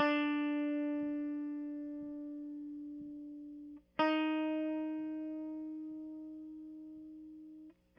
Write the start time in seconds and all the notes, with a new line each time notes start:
0.00 D4
3.99 D#4